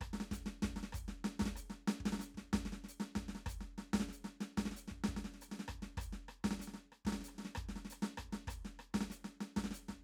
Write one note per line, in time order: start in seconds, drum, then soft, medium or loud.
0.01 kick soft
0.01 cross-stick medium
0.13 snare soft
0.20 snare soft
0.31 kick soft
0.31 snare soft
0.31 hi-hat pedal medium
0.46 snare soft
0.62 kick soft
0.62 snare medium
0.76 snare soft
0.83 snare soft
0.92 kick soft
0.92 cross-stick medium
0.92 hi-hat pedal medium
1.08 snare soft
1.24 snare medium
1.39 kick soft
1.39 snare medium
1.45 snare medium
1.55 cross-stick soft
1.55 hi-hat pedal medium
1.70 snare soft
1.87 snare medium
2.00 kick soft
2.05 snare medium
2.12 snare medium
2.19 snare soft
2.19 hi-hat pedal medium
2.34 kick soft
2.34 snare soft
2.53 kick soft
2.53 snare medium
2.65 snare soft
2.72 snare soft
2.84 snare soft
2.88 hi-hat pedal medium
3.00 snare soft
3.15 kick soft
3.15 snare medium
3.28 snare soft
3.35 snare soft
3.41 snare soft
3.46 kick soft
3.46 cross-stick medium
3.46 hi-hat pedal medium
3.61 snare soft
3.78 snare soft
3.93 kick soft
3.93 snare medium
3.99 snare medium
4.08 snare soft
4.13 hi-hat pedal soft
4.24 snare soft
4.40 snare soft
4.57 kick soft
4.57 snare medium
4.65 snare soft
4.71 snare soft
4.76 hi-hat pedal medium
4.88 kick soft
4.88 snare soft
5.04 snare medium
5.08 kick soft
5.16 snare soft
5.24 snare soft
5.31 snare soft
5.34 snare soft
5.41 cross-stick soft
5.41 hi-hat pedal soft
5.48 snare soft
5.51 snare soft
5.59 snare soft
5.68 kick soft
5.68 cross-stick medium
5.82 snare soft
5.97 kick soft
5.97 cross-stick medium
5.97 hi-hat pedal medium
6.05 kick soft
6.12 snare soft
6.28 cross-stick medium
6.44 kick soft
6.44 snare medium
6.51 snare medium
6.59 snare soft
6.59 hi-hat pedal medium
6.67 snare soft
6.74 snare soft
6.92 cross-stick soft
7.05 kick soft
7.05 snare medium
7.12 snare medium
7.20 snare soft
7.24 hi-hat pedal medium
7.28 cross-stick soft
7.34 snare soft
7.38 snare soft
7.45 snare soft
7.55 kick soft
7.55 cross-stick medium
7.64 kick soft
7.68 snare soft
7.76 snare soft
7.85 snare soft
7.90 cross-stick soft
7.90 hi-hat pedal medium
8.02 snare medium
8.17 kick soft
8.17 cross-stick medium
8.32 snare soft
8.47 kick soft
8.47 cross-stick medium
8.47 hi-hat pedal medium
8.65 snare soft
8.79 cross-stick soft
8.94 kick soft
8.94 snare medium
9.01 snare medium
9.10 snare soft
9.10 hi-hat pedal medium
9.24 snare soft
9.40 snare soft
9.56 kick soft
9.56 snare medium
9.64 snare soft
9.71 snare soft
9.71 hi-hat pedal medium
9.88 kick soft
9.88 snare soft